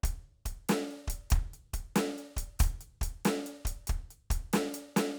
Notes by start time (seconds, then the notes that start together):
0.03 kick, closed hi-hat
0.46 kick, closed hi-hat
0.69 snare, closed hi-hat
0.91 closed hi-hat
1.08 kick, closed hi-hat
1.30 kick, closed hi-hat
1.54 closed hi-hat
1.74 kick, closed hi-hat
1.96 snare, closed hi-hat
2.18 closed hi-hat
2.37 kick, closed hi-hat
2.59 closed hi-hat, kick
2.81 closed hi-hat
3.01 kick, closed hi-hat
3.25 snare, closed hi-hat
3.46 closed hi-hat
3.65 kick, closed hi-hat
3.87 kick, closed hi-hat
4.11 closed hi-hat
4.30 kick, closed hi-hat
4.53 snare, closed hi-hat
4.74 closed hi-hat
4.96 snare, closed hi-hat